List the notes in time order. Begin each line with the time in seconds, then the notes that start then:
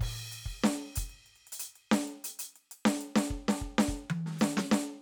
0.01 kick, crash
0.17 closed hi-hat
0.32 closed hi-hat
0.46 kick
0.51 closed hi-hat
0.64 snare
0.80 closed hi-hat
0.96 closed hi-hat, kick
1.10 closed hi-hat
1.26 closed hi-hat
1.36 closed hi-hat
1.47 closed hi-hat
1.53 closed hi-hat
1.60 closed hi-hat
1.76 closed hi-hat
1.92 snare
2.08 closed hi-hat
2.24 closed hi-hat
2.39 closed hi-hat
2.56 closed hi-hat
2.72 closed hi-hat
2.86 snare
3.01 closed hi-hat
3.16 snare
3.31 kick
3.49 snare
3.62 kick
3.79 snare
3.89 kick
3.98 hi-hat pedal
4.10 closed hi-hat, high tom
4.26 snare
4.31 snare
4.35 snare
4.39 snare, hi-hat pedal
4.57 snare
4.72 snare